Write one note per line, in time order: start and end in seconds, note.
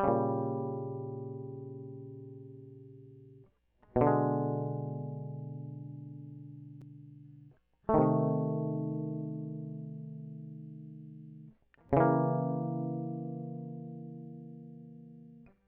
0.00 3.50 G3
0.05 3.46 C#3
0.09 3.50 A#2
3.98 7.55 B2
4.02 7.54 D3
4.07 7.61 G#3
7.89 11.54 A3
7.95 11.51 D#3
8.00 11.54 C3
11.94 15.53 C#3
11.94 15.47 E3
12.01 15.50 A#3